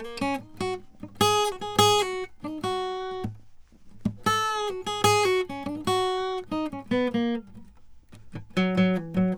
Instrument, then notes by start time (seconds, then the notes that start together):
acoustic guitar
0.00 A#3
0.23 C#4
0.62 F#4
1.22 G#4
1.45 G#4
1.63 G#4
1.80 G#4
2.01 F#4
2.46 D#4
2.65 F#4
4.28 A4
4.69 F#4
4.88 G#4
5.06 G#4
5.26 F#4
5.51 C#4
5.68 D4
5.89 F#4
6.53 D#4
6.74 C#4
6.93 B3
7.16 A#3
8.58 F#3
8.79 F#3
8.98 E3
9.16 F#3